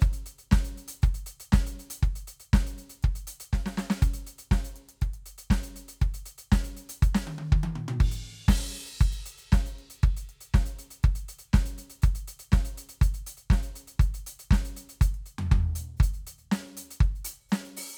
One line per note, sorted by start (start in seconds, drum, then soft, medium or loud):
0.01 closed hi-hat medium
0.01 kick loud
0.13 closed hi-hat medium
0.26 closed hi-hat medium
0.39 closed hi-hat medium
0.51 kick loud
0.51 snare loud
0.65 closed hi-hat medium
0.78 closed hi-hat medium
0.88 closed hi-hat loud
1.02 closed hi-hat medium
1.02 kick loud
1.14 closed hi-hat medium
1.26 closed hi-hat medium
1.40 closed hi-hat medium
1.52 kick loud
1.52 snare loud
1.67 closed hi-hat medium
1.79 closed hi-hat medium
1.90 closed hi-hat loud
2.03 kick loud
2.03 closed hi-hat medium
2.16 closed hi-hat medium
2.27 closed hi-hat medium
2.40 closed hi-hat medium
2.53 kick loud
2.53 snare loud
2.67 closed hi-hat medium
2.78 closed hi-hat medium
2.90 closed hi-hat medium
3.03 kick loud
3.03 closed hi-hat medium
3.15 closed hi-hat medium
3.27 closed hi-hat loud
3.40 closed hi-hat medium
3.53 kick medium
3.53 snare medium
3.66 snare medium
3.78 snare loud
3.90 snare loud
4.02 closed hi-hat medium
4.02 kick loud
4.14 closed hi-hat medium
4.27 closed hi-hat medium
4.39 closed hi-hat medium
4.51 kick loud
4.51 snare loud
4.65 closed hi-hat medium
4.76 closed hi-hat medium
4.89 closed hi-hat medium
5.02 kick medium
5.02 closed hi-hat medium
5.14 closed hi-hat medium
5.26 closed hi-hat medium
5.38 closed hi-hat medium
5.50 kick loud
5.50 snare loud
5.63 closed hi-hat medium
5.76 closed hi-hat medium
5.88 closed hi-hat medium
6.02 kick loud
6.02 closed hi-hat medium
6.14 closed hi-hat medium
6.26 closed hi-hat medium
6.38 closed hi-hat medium
6.52 kick loud
6.52 snare loud
6.64 closed hi-hat medium
6.77 closed hi-hat medium
6.89 closed hi-hat medium
7.02 closed hi-hat medium
7.02 kick loud
7.15 snare loud
7.27 high tom loud
7.38 high tom loud
7.52 kick loud
7.52 high tom medium
7.63 high tom loud
7.76 mid tom loud
7.88 mid tom loud
8.00 kick loud
8.00 ride medium
8.11 closed hi-hat medium
8.48 kick loud
8.48 snare loud
8.48 crash loud
8.76 closed hi-hat soft
8.86 closed hi-hat medium
9.01 closed hi-hat medium
9.01 kick loud
9.12 closed hi-hat soft
9.26 closed hi-hat medium
9.38 closed hi-hat soft
9.52 kick loud
9.52 snare loud
9.66 closed hi-hat soft
9.79 closed hi-hat soft
9.90 closed hi-hat medium
10.03 kick loud
10.03 closed hi-hat medium
10.17 closed hi-hat medium
10.29 closed hi-hat medium
10.41 closed hi-hat medium
10.54 kick loud
10.54 snare loud
10.66 closed hi-hat medium
10.79 closed hi-hat medium
10.91 closed hi-hat medium
11.03 kick loud
11.03 closed hi-hat medium
11.15 closed hi-hat medium
11.29 closed hi-hat medium
11.39 closed hi-hat medium
11.53 kick loud
11.53 snare loud
11.66 closed hi-hat medium
11.78 closed hi-hat medium
11.90 closed hi-hat medium
12.02 closed hi-hat medium
12.02 kick loud
12.15 closed hi-hat medium
12.28 closed hi-hat medium
12.39 closed hi-hat medium
12.52 kick loud
12.52 snare loud
12.65 closed hi-hat medium
12.78 closed hi-hat medium
12.89 closed hi-hat medium
13.01 closed hi-hat medium
13.01 kick loud
13.14 closed hi-hat medium
13.27 closed hi-hat medium
13.37 closed hi-hat medium
13.50 kick loud
13.50 snare loud
13.63 closed hi-hat medium
13.76 closed hi-hat medium
13.88 closed hi-hat medium
14.00 closed hi-hat medium
14.00 kick loud
14.14 closed hi-hat medium
14.27 closed hi-hat medium
14.39 closed hi-hat medium
14.51 kick loud
14.51 snare loud
14.65 closed hi-hat medium
14.77 closed hi-hat medium
14.89 closed hi-hat medium
15.01 closed hi-hat medium
15.01 kick loud
15.14 closed hi-hat soft
15.26 closed hi-hat soft
15.39 floor tom loud
15.52 kick loud
15.52 floor tom loud
15.76 open hi-hat medium
15.95 kick soft
15.95 hi-hat pedal soft
16.00 closed hi-hat medium
16.00 kick loud
16.14 closed hi-hat soft
16.27 closed hi-hat medium
16.38 closed hi-hat soft
16.52 snare loud
16.68 closed hi-hat soft
16.77 closed hi-hat loud
16.91 closed hi-hat medium
17.01 kick loud
17.01 closed hi-hat soft
17.15 closed hi-hat soft
17.25 closed hi-hat loud
17.40 open hi-hat soft
17.49 snare loud
17.49 hi-hat pedal soft
17.65 closed hi-hat soft
17.77 open hi-hat loud
17.92 open hi-hat soft